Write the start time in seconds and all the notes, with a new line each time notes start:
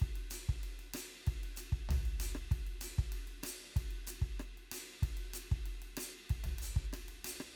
0.01 kick, ride
0.17 ride
0.31 hi-hat pedal, ride
0.50 kick
0.64 ride
0.80 ride
0.95 cross-stick, hi-hat pedal, ride
1.28 kick, ride
1.44 ride
1.57 hi-hat pedal, ride
1.73 kick
1.90 floor tom, ride
2.06 ride
2.21 hi-hat pedal, ride
2.36 cross-stick
2.52 kick, ride
2.68 ride
2.82 hi-hat pedal, ride
2.99 kick
3.13 ride
3.28 ride
3.44 cross-stick, hi-hat pedal, ride
3.77 kick, ride
3.92 ride
4.08 hi-hat pedal, ride
4.22 kick
4.41 cross-stick, ride
4.59 ride
4.73 hi-hat pedal, ride
5.03 kick, ride
5.18 ride
5.35 hi-hat pedal, ride
5.52 kick
5.67 ride
5.83 ride
5.98 cross-stick, hi-hat pedal, ride
6.31 kick, ride
6.45 floor tom, ride
6.59 hi-hat pedal, ride
6.77 kick
6.94 cross-stick, ride
7.09 ride
7.26 hi-hat pedal, ride
7.41 cross-stick